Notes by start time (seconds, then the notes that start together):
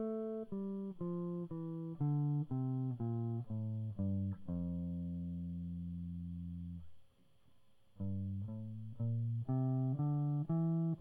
0.00 A3
0.53 G3
1.02 F3
1.52 E3
2.02 D3
2.53 C3
3.02 A#2
3.53 A2
4.01 G2
4.51 F2
8.03 G2
8.51 A2
9.02 A#2
9.51 C3
10.01 D3
10.51 E3